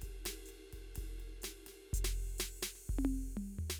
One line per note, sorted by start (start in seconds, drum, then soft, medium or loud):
0.01 kick soft
0.01 hi-hat pedal soft
0.01 ride soft
0.08 kick soft
0.25 snare medium
0.25 ride medium
0.46 hi-hat pedal medium
0.46 ride soft
0.53 snare soft
0.73 kick soft
0.73 ride soft
0.95 kick soft
0.95 hi-hat pedal soft
0.95 ride medium
1.03 kick soft
1.20 ride soft
1.42 snare medium
1.42 hi-hat pedal medium
1.42 ride medium
1.66 snare soft
1.66 ride medium
1.93 kick medium
1.93 hi-hat pedal loud
2.04 snare medium
2.04 crash medium
2.38 snare medium
2.38 crash medium
2.62 snare medium
2.62 crash medium
2.75 snare soft
2.89 kick soft
2.96 kick soft
2.96 high tom loud
3.05 high tom loud
3.37 mid tom medium
3.58 kick soft
3.58 floor tom medium
3.70 snare medium